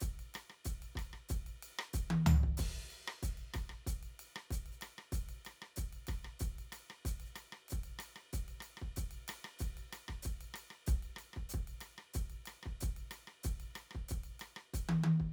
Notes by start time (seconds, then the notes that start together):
0.01 kick, hi-hat pedal, ride
0.20 ride
0.35 cross-stick, ride
0.50 cross-stick
0.65 kick, hi-hat pedal, ride
0.83 ride
0.96 kick, cross-stick, ride
1.14 cross-stick
1.29 kick, hi-hat pedal, ride
1.47 ride
1.63 ride
1.79 cross-stick
1.94 kick, hi-hat pedal, ride
2.11 high tom
2.27 floor tom
2.44 kick
2.58 kick, hi-hat pedal, crash, ride
2.91 ride
3.08 cross-stick
3.23 kick, hi-hat pedal, ride
3.38 ride
3.54 kick, cross-stick, ride
3.70 cross-stick
3.87 kick, hi-hat pedal, ride
4.03 ride
4.20 ride
4.36 cross-stick
4.51 kick, hi-hat pedal, ride
4.66 ride
4.73 hi-hat pedal
4.82 cross-stick, ride
4.99 cross-stick
5.13 kick, hi-hat pedal, ride
5.29 ride
5.46 cross-stick, ride
5.63 cross-stick
5.77 kick, hi-hat pedal, ride
5.93 ride
6.08 kick, cross-stick, ride
6.25 cross-stick
6.40 kick, hi-hat pedal, ride
6.59 ride
6.73 cross-stick, ride
6.91 cross-stick
7.06 kick, hi-hat pedal, ride
7.20 ride
7.26 hi-hat pedal
7.36 cross-stick, ride
7.53 cross-stick
7.69 kick, hi-hat pedal, ride
7.84 ride
7.99 cross-stick, ride
8.16 cross-stick
8.33 kick, hi-hat pedal, ride
8.49 ride
8.61 cross-stick, ride
8.78 cross-stick
8.82 kick
8.97 kick, hi-hat pedal, ride
9.11 ride
9.29 cross-stick, ride
9.45 cross-stick
9.59 kick, hi-hat pedal, ride
9.78 ride
9.93 cross-stick, ride
10.09 kick, cross-stick
10.23 kick, hi-hat pedal, ride
10.41 ride
10.55 cross-stick, ride
10.71 cross-stick
10.87 kick, hi-hat pedal, ride
11.03 ride
11.17 cross-stick, ride
11.34 kick, cross-stick
11.50 hi-hat pedal, ride
11.54 kick
11.68 ride
11.81 cross-stick, ride
11.99 cross-stick
12.14 kick, hi-hat pedal, ride
12.30 ride
12.46 cross-stick, ride
12.63 kick, cross-stick
12.81 kick, hi-hat pedal, ride
12.97 ride
13.12 cross-stick, ride
13.28 cross-stick
13.44 kick, hi-hat pedal, ride
13.61 ride
13.76 cross-stick, ride
13.91 kick, cross-stick
14.09 kick, hi-hat pedal, ride
14.24 ride
14.40 cross-stick, ride
14.57 cross-stick
14.74 kick, hi-hat pedal, ride
14.89 high tom
15.04 high tom
15.20 kick